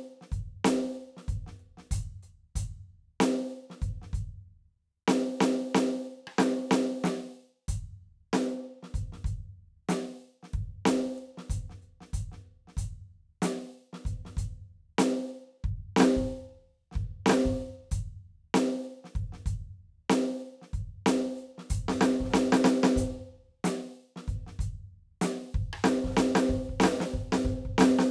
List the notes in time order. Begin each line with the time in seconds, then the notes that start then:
0.01 closed hi-hat
0.21 snare
0.32 closed hi-hat, kick
0.65 closed hi-hat, snare
1.17 snare
1.28 closed hi-hat, kick
1.47 snare
1.60 closed hi-hat
1.70 kick
1.78 snare
1.91 closed hi-hat, kick
2.23 closed hi-hat
2.56 closed hi-hat, kick
3.20 closed hi-hat, snare
3.52 closed hi-hat
3.70 snare
3.82 closed hi-hat, kick
4.02 snare
4.13 closed hi-hat, kick
5.08 snare
5.41 snare
5.75 snare
6.27 cross-stick
6.39 snare
6.71 snare
7.04 snare
7.68 closed hi-hat, kick
8.33 closed hi-hat, snare
8.64 closed hi-hat
8.83 snare
8.94 closed hi-hat, kick
9.13 snare
9.24 closed hi-hat, kick
9.89 closed hi-hat, snare
10.21 closed hi-hat
10.43 snare
10.54 kick, closed hi-hat
10.86 closed hi-hat, snare
11.18 closed hi-hat
11.38 snare
11.50 closed hi-hat, kick
11.70 snare
11.82 closed hi-hat
12.01 snare
12.13 closed hi-hat, kick
12.32 snare
12.47 closed hi-hat
12.68 snare
12.77 closed hi-hat, kick
13.42 closed hi-hat, snare
13.93 snare
14.05 closed hi-hat, kick
14.25 snare
14.37 closed hi-hat, kick
14.99 closed hi-hat, snare
15.64 kick
15.97 snare
16.00 snare
16.17 kick
16.91 kick, snare
16.95 kick
17.26 snare
17.30 snare
17.46 kick
17.91 closed hi-hat, kick
18.54 closed hi-hat, snare
19.04 snare
19.15 kick, closed hi-hat
19.20 crash
19.33 snare
19.46 closed hi-hat, kick
20.10 closed hi-hat, snare
20.41 closed hi-hat
20.62 snare
20.73 closed hi-hat, kick
21.06 closed hi-hat, snare
21.38 closed hi-hat
21.58 snare
21.70 closed hi-hat, kick
21.89 snare
21.99 snare, hi-hat pedal
22.20 kick, snare
22.29 snare
22.32 snare
22.34 snare
22.53 snare
22.64 snare
22.84 snare
22.96 closed hi-hat, kick
23.64 closed hi-hat, snare
24.16 snare
24.28 closed hi-hat, kick
24.47 snare
24.59 closed hi-hat, kick
25.22 closed hi-hat, snare
25.52 kick, hi-hat pedal
25.73 cross-stick
25.84 snare
26.04 kick, snare
26.10 snare
26.16 snare, hi-hat pedal
26.35 snare
26.49 kick
26.69 kick
26.80 snare, hi-hat pedal
26.84 snare
27.01 snare
27.14 kick
27.32 snare
27.45 kick
27.65 kick
27.73 kick
27.78 snare
27.81 snare
27.99 snare